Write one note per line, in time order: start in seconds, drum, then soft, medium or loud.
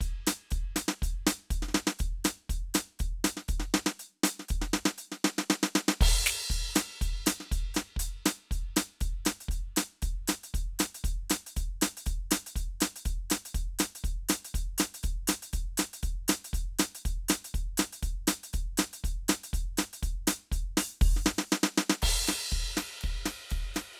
0.01 closed hi-hat medium
0.01 kick medium
0.27 closed hi-hat loud
0.27 snare loud
0.51 closed hi-hat medium
0.51 kick medium
0.76 closed hi-hat medium
0.76 snare medium
0.88 snare loud
1.02 closed hi-hat medium
1.02 kick medium
1.27 closed hi-hat loud
1.27 snare loud
1.51 closed hi-hat medium
1.51 kick medium
1.63 snare medium
1.69 snare soft
1.75 snare loud
1.87 snare loud
1.99 closed hi-hat medium
1.99 kick medium
2.25 closed hi-hat loud
2.25 snare loud
2.50 closed hi-hat medium
2.50 kick medium
2.74 closed hi-hat loud
2.74 snare loud
2.99 closed hi-hat medium
2.99 kick medium
3.25 closed hi-hat loud
3.25 snare loud
3.37 snare medium
3.49 closed hi-hat medium
3.49 kick medium
3.60 snare medium
3.74 snare loud
3.86 snare loud
4.00 closed hi-hat medium
4.24 closed hi-hat loud
4.24 snare loud
4.40 snare soft
4.49 closed hi-hat medium
4.49 kick medium
4.62 snare medium
4.74 snare loud
4.86 snare loud
4.98 closed hi-hat medium
5.12 snare medium
5.25 snare loud
5.39 snare medium
5.50 snare loud
5.63 snare loud
5.76 snare loud
5.89 snare loud
6.01 kick loud
6.01 crash medium
6.26 closed hi-hat loud
6.26 snare loud
6.50 closed hi-hat medium
6.50 kick medium
6.76 closed hi-hat loud
6.76 snare loud
7.02 closed hi-hat medium
7.02 kick medium
7.27 closed hi-hat loud
7.27 snare loud
7.41 snare soft
7.47 snare soft
7.52 closed hi-hat medium
7.52 kick medium
7.75 closed hi-hat medium
7.75 snare loud
7.97 closed hi-hat loud
7.97 kick medium
8.26 closed hi-hat loud
8.26 snare loud
8.51 closed hi-hat medium
8.51 kick medium
8.77 closed hi-hat loud
8.77 snare loud
9.01 closed hi-hat medium
9.01 kick medium
9.26 closed hi-hat medium
9.26 snare loud
9.41 closed hi-hat soft
9.49 closed hi-hat medium
9.49 kick medium
9.77 closed hi-hat loud
9.77 snare loud
10.02 closed hi-hat medium
10.02 kick medium
10.28 closed hi-hat loud
10.28 snare loud
10.44 closed hi-hat medium
10.54 closed hi-hat medium
10.54 kick medium
10.79 closed hi-hat loud
10.79 snare loud
10.95 closed hi-hat medium
11.04 closed hi-hat medium
11.04 kick medium
11.30 closed hi-hat loud
11.30 snare loud
11.47 closed hi-hat medium
11.57 kick medium
11.82 closed hi-hat loud
11.82 snare loud
11.97 closed hi-hat medium
12.06 closed hi-hat medium
12.06 kick medium
12.31 closed hi-hat loud
12.31 snare loud
12.47 closed hi-hat medium
12.56 closed hi-hat medium
12.56 kick medium
12.81 closed hi-hat loud
12.81 snare loud
12.96 closed hi-hat medium
13.06 closed hi-hat medium
13.06 kick medium
13.30 closed hi-hat loud
13.30 snare loud
13.46 closed hi-hat medium
13.55 closed hi-hat medium
13.55 kick medium
13.79 closed hi-hat loud
13.79 snare loud
13.96 closed hi-hat medium
14.04 closed hi-hat medium
14.04 kick medium
14.29 closed hi-hat loud
14.29 snare loud
14.45 closed hi-hat medium
14.55 closed hi-hat medium
14.55 kick medium
14.78 closed hi-hat loud
14.78 snare loud
14.94 closed hi-hat medium
15.03 closed hi-hat medium
15.03 kick medium
15.28 closed hi-hat loud
15.28 snare loud
15.43 closed hi-hat medium
15.53 closed hi-hat medium
15.53 kick medium
15.78 closed hi-hat loud
15.78 snare loud
15.94 closed hi-hat medium
16.03 closed hi-hat medium
16.03 kick medium
16.28 closed hi-hat loud
16.28 snare loud
16.45 closed hi-hat medium
16.54 closed hi-hat medium
16.54 kick medium
16.79 closed hi-hat loud
16.79 snare loud
16.95 closed hi-hat medium
17.06 closed hi-hat medium
17.06 kick medium
17.29 closed hi-hat loud
17.29 snare loud
17.45 closed hi-hat medium
17.55 closed hi-hat soft
17.55 kick medium
17.78 closed hi-hat loud
17.78 snare loud
17.93 closed hi-hat medium
18.03 closed hi-hat medium
18.03 kick medium
18.28 closed hi-hat loud
18.28 snare loud
18.44 closed hi-hat medium
18.54 closed hi-hat medium
18.54 kick medium
18.78 closed hi-hat loud
18.78 snare loud
18.93 closed hi-hat medium
19.04 closed hi-hat medium
19.04 kick medium
19.29 closed hi-hat loud
19.29 snare loud
19.44 closed hi-hat medium
19.54 closed hi-hat medium
19.54 kick medium
19.78 closed hi-hat medium
19.78 snare loud
19.93 closed hi-hat medium
20.03 kick medium
20.27 closed hi-hat loud
20.27 snare loud
20.52 closed hi-hat medium
20.52 kick medium
20.77 open hi-hat loud
20.77 snare loud
21.01 open hi-hat medium
21.01 kick loud
21.17 snare soft
21.26 snare loud
21.39 snare loud
21.52 snare loud
21.64 snare loud
21.78 snare loud
21.90 snare loud
22.02 kick medium
22.02 hi-hat pedal medium
22.02 crash medium
22.28 snare loud
22.28 ride loud
22.52 kick medium
22.52 ride medium
22.77 snare medium
22.77 ride loud
23.01 kick medium
23.01 ride medium
23.26 snare medium
23.26 ride loud
23.50 kick medium
23.50 hi-hat pedal soft
23.50 ride medium
23.74 snare medium
23.74 hi-hat pedal soft
23.74 ride medium
23.94 ride soft